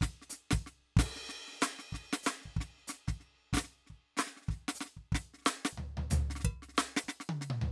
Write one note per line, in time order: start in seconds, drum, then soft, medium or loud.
0.01 kick medium
0.01 snare medium
0.22 snare soft
0.29 snare soft
0.29 hi-hat pedal loud
0.51 kick medium
0.51 snare loud
0.66 snare soft
0.97 kick loud
0.97 snare loud
0.97 hi-hat pedal loud
0.97 ride loud
1.16 snare soft
1.29 snare soft
1.48 snare soft
1.52 snare soft
1.55 snare soft
1.61 snare soft
1.61 snare loud
1.61 hi-hat pedal loud
1.66 snare soft
1.79 snare soft
1.92 kick soft
1.92 snare soft
2.13 snare loud
2.23 snare loud
2.23 hi-hat pedal medium
2.41 snare soft
2.45 kick soft
2.45 snare soft
2.56 kick medium
2.60 snare medium
2.78 snare soft
2.87 snare medium
2.87 hi-hat pedal loud
2.93 snare soft
3.07 kick medium
3.07 snare medium
3.20 snare soft
3.53 kick medium
3.53 snare loud
3.53 hi-hat pedal loud
3.57 snare loud
3.69 snare soft
3.71 snare soft
3.86 kick soft
3.86 snare soft
3.90 snare soft
3.92 snare soft
4.17 snare medium
4.17 hi-hat pedal loud
4.19 snare loud
4.27 snare soft
4.30 snare soft
4.36 snare soft
4.42 snare soft
4.46 kick medium
4.46 snare soft
4.49 snare soft
4.52 snare soft
4.68 snare loud
4.75 hi-hat pedal loud
4.81 snare medium
4.85 snare soft
4.97 kick soft
5.12 kick medium
5.12 snare medium
5.33 snare soft
5.38 snare soft
5.41 snare soft
5.41 hi-hat pedal loud
5.46 snare loud
5.65 snare loud
5.72 kick soft
5.77 floor tom medium
5.97 floor tom medium
6.10 floor tom loud
6.10 hi-hat pedal loud
6.30 snare medium
6.35 snare medium
6.40 snare soft
6.44 kick medium
6.44 percussion loud
6.62 snare soft
6.68 snare soft
6.74 snare soft
6.74 hi-hat pedal medium
6.78 snare loud
6.96 snare loud
7.04 kick soft
7.08 snare medium
7.20 snare medium
7.29 high tom medium
7.41 snare medium
7.50 mid tom loud
7.61 floor tom loud